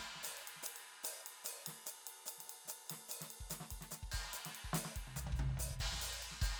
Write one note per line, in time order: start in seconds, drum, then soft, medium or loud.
0.01 hi-hat pedal soft
0.01 ride soft
0.15 snare soft
0.23 snare soft
0.23 hi-hat pedal loud
0.23 ride loud
0.37 ride medium
0.42 hi-hat pedal soft
0.47 ride medium
0.56 snare soft
0.63 hi-hat pedal loud
0.63 ride loud
0.76 ride medium
0.81 hi-hat pedal soft
1.04 hi-hat pedal loud
1.04 ride loud
1.22 hi-hat pedal soft
1.26 ride medium
1.44 hi-hat pedal loud
1.44 ride loud
1.63 hi-hat pedal soft
1.63 ride loud
1.67 snare soft
1.86 hi-hat pedal loud
1.86 ride medium
2.05 hi-hat pedal soft
2.05 ride medium
2.26 hi-hat pedal medium
2.26 ride loud
2.38 snare soft
2.38 ride medium
2.46 hi-hat pedal soft
2.46 ride medium
2.65 snare soft
2.65 hi-hat pedal loud
2.70 ride medium
2.86 hi-hat pedal soft
2.86 ride loud
2.91 snare soft
3.09 hi-hat pedal medium
3.09 ride loud
3.21 snare soft
3.21 ride medium
3.26 hi-hat pedal soft
3.30 ride medium
3.40 kick soft
3.50 snare soft
3.50 hi-hat pedal loud
3.50 ride loud
3.60 snare soft
3.69 kick soft
3.69 hi-hat pedal soft
3.69 ride medium
3.81 snare soft
3.81 ride medium
3.91 snare soft
3.91 hi-hat pedal loud
3.91 ride medium
4.03 kick soft
4.11 kick soft
4.11 hi-hat pedal medium
4.11 ride medium
4.24 snare soft
4.33 hi-hat pedal medium
4.33 ride medium
4.45 snare soft
4.45 ride medium
4.52 hi-hat pedal soft
4.52 ride medium
4.64 kick soft
4.73 snare medium
4.73 hi-hat pedal loud
4.73 ride medium
4.85 snare soft
4.94 kick soft
4.94 hi-hat pedal soft
4.94 ride medium
5.07 high tom soft
5.16 floor tom medium
5.16 hi-hat pedal loud
5.27 floor tom medium
5.32 kick soft
5.32 hi-hat pedal soft
5.39 high tom medium
5.49 floor tom soft
5.57 floor tom medium
5.57 hi-hat pedal loud
5.71 kick soft
5.79 kick soft
5.79 hi-hat pedal soft
5.79 ride medium
5.92 snare soft
6.01 hi-hat pedal loud
6.01 ride medium
6.13 ride medium
6.22 hi-hat pedal soft
6.22 ride medium
6.31 snare soft
6.42 kick medium
6.42 hi-hat pedal medium
6.42 ride medium